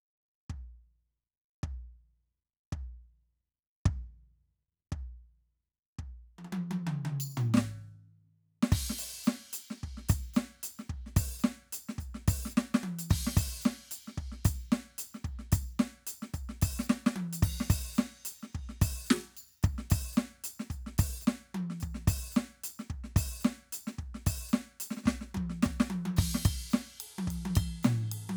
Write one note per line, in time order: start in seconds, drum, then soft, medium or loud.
0.50 kick medium
1.63 kick medium
2.72 kick medium
3.86 kick loud
4.92 kick medium
5.99 kick medium
6.38 high tom medium
6.45 high tom medium
6.52 high tom loud
6.71 high tom loud
6.87 mid tom loud
7.05 mid tom loud
7.20 percussion loud
7.37 floor tom loud
7.54 kick soft
7.54 snare loud
7.57 snare loud
8.63 snare loud
8.72 kick loud
8.72 crash loud
8.90 snare medium
8.99 percussion loud
9.24 snare loud
9.24 percussion medium
9.53 percussion loud
9.70 snare medium
9.83 kick medium
9.97 snare soft
10.09 kick loud
10.09 percussion loud
10.34 snare loud
10.34 percussion medium
10.63 percussion loud
10.79 snare medium
10.90 kick medium
11.06 snare soft
11.16 kick loud
11.16 percussion loud
11.39 percussion medium
11.44 snare loud
11.73 percussion loud
11.89 snare medium
11.98 kick medium
11.98 percussion soft
12.15 snare medium
12.28 kick loud
12.28 percussion loud
12.45 snare medium
12.50 percussion medium
12.57 snare loud
12.74 snare loud
12.83 high tom loud
12.99 percussion loud
13.10 kick loud
13.10 crash loud
13.27 snare medium
13.37 kick loud
13.37 percussion loud
13.62 snare loud
13.62 percussion medium
13.91 percussion loud
14.07 snare soft
14.18 kick medium
14.18 percussion soft
14.32 snare soft
14.45 kick loud
14.45 percussion loud
14.72 snare loud
14.98 percussion loud
15.14 snare soft
15.24 kick medium
15.24 percussion soft
15.39 snare soft
15.52 kick loud
15.52 percussion loud
15.79 snare loud
16.07 percussion loud
16.22 snare medium
16.34 kick medium
16.34 percussion medium
16.49 snare medium
16.62 kick loud
16.62 percussion loud
16.79 snare medium
16.79 percussion medium
16.90 snare loud
17.06 snare loud
17.16 high tom loud
17.33 percussion loud
17.42 kick loud
17.42 crash loud
17.60 snare medium
17.70 kick loud
17.70 percussion loud
17.95 snare loud
17.95 percussion medium
18.25 percussion loud
18.43 snare soft
18.53 kick medium
18.53 percussion soft
18.69 snare soft
18.82 kick loud
18.82 percussion loud
19.07 snare loud
19.07 percussion medium
19.37 percussion medium
19.63 kick loud
19.63 percussion medium
19.78 snare medium
19.90 kick loud
19.90 percussion loud
20.13 percussion medium
20.17 snare loud
20.44 percussion loud
20.60 snare medium
20.70 kick medium
20.70 percussion soft
20.86 snare medium
20.98 kick loud
20.98 percussion loud
21.21 percussion medium
21.27 snare loud
21.55 high tom loud
21.70 snare soft
21.80 kick medium
21.80 percussion medium
21.95 snare medium
22.07 kick loud
22.07 percussion loud
22.32 percussion medium
22.36 snare loud
22.64 percussion loud
22.79 snare medium
22.90 kick medium
22.90 percussion soft
23.04 snare soft
23.16 kick loud
23.16 percussion loud
23.41 snare loud
23.41 percussion medium
23.72 percussion loud
23.87 snare medium
23.99 kick medium
24.15 snare soft
24.26 kick loud
24.26 percussion loud
24.49 percussion medium
24.53 snare loud
24.80 percussion loud
24.91 snare medium
24.97 snare medium
25.04 kick medium
25.04 snare soft
25.07 snare loud
25.21 snare medium
25.35 kick medium
25.35 high tom loud
25.50 snare soft
25.63 kick medium
25.63 snare loud
25.63 percussion medium
25.80 snare loud
25.90 high tom loud
26.05 high tom loud
26.17 kick loud
26.17 crash loud
26.35 snare medium
26.45 kick loud
26.45 ride bell loud
26.70 snare loud
26.70 percussion medium
27.00 ride loud
27.18 high tom loud
27.27 kick medium
27.27 ride medium
27.45 high tom loud
27.56 kick loud
27.56 ride bell loud
27.83 snare loud
27.83 floor tom loud
27.83 percussion medium
28.12 ride loud
28.29 high tom loud